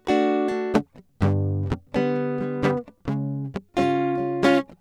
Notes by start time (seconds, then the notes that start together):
0.09 A3 D4 F#4
0.49 A3 D4
1.22 G2 D3 G3 B3
1.96 D3 G3 B3
2.17 D3
2.40 D3 G3
2.64 D3 G3 B3
3.06 C#3 G#3
3.78 C#3 G3 C#4 F4
4.17 G3 C#4
4.44 G#3 C#4 F4